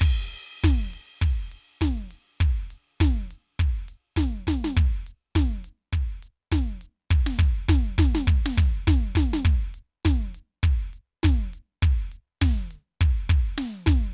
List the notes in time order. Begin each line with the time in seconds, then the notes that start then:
0.01 kick, hi-hat pedal
0.34 open hi-hat
0.63 kick, snare, hi-hat pedal
0.93 closed hi-hat
1.19 kick, hi-hat pedal
1.24 closed hi-hat
1.51 open hi-hat
1.81 kick, snare
2.11 closed hi-hat
2.37 kick, hi-hat pedal
2.41 closed hi-hat
2.70 closed hi-hat
2.98 kick, snare, hi-hat pedal
3.31 closed hi-hat
3.56 kick, hi-hat pedal
3.61 closed hi-hat
3.88 open hi-hat, hi-hat pedal
4.15 kick, snare, closed hi-hat, hi-hat pedal
4.47 open hi-hat, kick, snare
4.64 snare
4.73 hi-hat pedal
4.77 closed hi-hat, kick
5.04 closed hi-hat, hi-hat pedal
5.31 hi-hat pedal
5.35 kick, snare
5.64 closed hi-hat
5.93 closed hi-hat, kick
6.23 closed hi-hat
6.52 kick, snare
6.81 closed hi-hat
7.10 closed hi-hat, kick
7.26 snare
7.39 open hi-hat, kick
7.69 kick, snare
7.89 snare
7.98 kick, snare
8.15 snare
8.27 open hi-hat, kick
8.46 snare
8.57 open hi-hat, kick
8.87 kick, snare
9.15 kick, snare
9.33 snare
9.42 kick, hi-hat pedal
9.74 closed hi-hat
10.03 kick, snare, hi-hat pedal
10.35 closed hi-hat
10.63 kick, closed hi-hat
10.93 closed hi-hat
11.22 kick, snare, hi-hat pedal
11.53 closed hi-hat
11.82 kick, closed hi-hat
12.12 closed hi-hat
12.39 kick, snare, hi-hat pedal
12.71 closed hi-hat
13.01 kick, closed hi-hat
13.29 open hi-hat, kick
13.55 snare, hi-hat pedal
13.59 closed hi-hat
13.86 open hi-hat, kick, snare